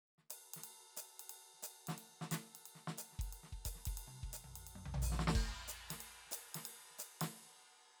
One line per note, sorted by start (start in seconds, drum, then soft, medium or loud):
0.18 snare soft
0.23 snare soft
0.30 hi-hat pedal medium
0.30 ride medium
0.53 snare soft
0.53 ride medium
0.63 ride medium
0.96 hi-hat pedal medium
0.96 ride medium
1.19 ride medium
1.29 ride medium
1.53 snare soft
1.62 hi-hat pedal medium
1.62 ride medium
1.87 snare medium
1.87 ride medium
1.98 ride medium
2.21 snare soft
2.31 snare medium
2.31 hi-hat pedal loud
2.31 ride medium
2.55 ride medium
2.65 ride medium
2.75 snare soft
2.87 snare soft
2.98 hi-hat pedal medium
2.98 ride medium
3.12 snare soft
3.19 kick soft
3.19 ride medium
3.32 ride medium
3.43 snare soft
3.52 kick soft
3.65 kick soft
3.65 hi-hat pedal medium
3.65 ride medium
3.75 snare soft
3.85 kick soft
3.85 ride medium
3.97 ride medium
4.07 high tom soft
4.23 kick soft
4.33 hi-hat pedal medium
4.33 ride medium
4.44 floor tom soft
4.55 ride medium
4.67 ride medium
4.75 mid tom soft
4.85 floor tom medium
4.94 floor tom medium
5.02 hi-hat pedal loud
5.02 high tom soft
5.12 snare soft
5.19 snare medium
5.27 snare medium
5.35 kick medium
5.35 ride medium
5.68 hi-hat pedal loud
5.68 ride medium
5.88 snare soft
5.88 hi-hat pedal soft
5.88 ride loud
6.00 ride medium
6.26 snare soft
6.31 hi-hat pedal loud
6.31 ride loud
6.50 hi-hat pedal soft
6.50 ride loud
6.55 snare soft
6.65 ride medium
6.90 snare soft
6.98 hi-hat pedal medium
6.98 ride medium
7.21 snare medium
7.21 ride loud